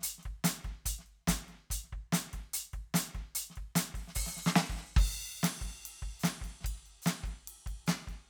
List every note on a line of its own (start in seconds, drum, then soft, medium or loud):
0.01 closed hi-hat loud
0.01 snare soft
0.19 snare soft
0.24 kick soft
0.24 closed hi-hat soft
0.45 closed hi-hat loud
0.45 snare loud
0.65 kick medium
0.65 closed hi-hat soft
0.86 closed hi-hat loud
0.86 kick medium
0.99 snare soft
1.07 closed hi-hat soft
1.28 closed hi-hat loud
1.28 kick medium
1.28 snare loud
1.49 closed hi-hat soft
1.71 closed hi-hat loud
1.71 kick medium
1.84 snare soft
1.93 kick soft
1.93 closed hi-hat soft
2.13 closed hi-hat loud
2.13 snare loud
2.34 kick soft
2.34 closed hi-hat soft
2.54 closed hi-hat loud
2.74 kick soft
2.74 closed hi-hat soft
2.95 closed hi-hat loud
2.95 snare loud
3.15 kick medium
3.15 closed hi-hat soft
3.35 closed hi-hat loud
3.35 snare soft
3.51 snare soft
3.56 kick soft
3.56 closed hi-hat soft
3.76 closed hi-hat loud
3.76 snare loud
3.95 kick soft
3.95 open hi-hat soft
4.08 snare soft
4.16 open hi-hat loud
4.16 kick medium
4.27 snare medium
4.37 snare soft
4.47 snare loud
4.57 snare loud
4.70 kick medium
4.77 snare soft
4.97 kick loud
4.97 crash loud
5.44 snare loud
5.44 hi-hat pedal medium
5.44 ride loud
5.62 kick medium
5.62 ride soft
5.86 ride medium
6.03 kick medium
6.20 snare loud
6.20 hi-hat pedal medium
6.26 ride loud
6.42 kick soft
6.42 ride soft
6.62 kick medium
6.62 snare soft
6.67 ride bell medium
6.76 snare soft
6.79 snare soft
6.87 ride soft
7.03 snare loud
7.03 hi-hat pedal medium
7.08 ride bell medium
7.24 kick medium
7.24 ride soft
7.48 ride medium
7.67 kick medium
7.67 snare soft
7.67 ride soft
7.87 snare loud
7.87 hi-hat pedal medium
7.87 ride bell soft
8.08 kick soft
8.08 ride soft